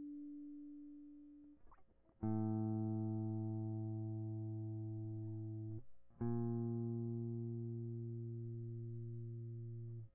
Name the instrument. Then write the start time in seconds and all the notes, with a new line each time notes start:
electric guitar
2.25 A2
6.23 A#2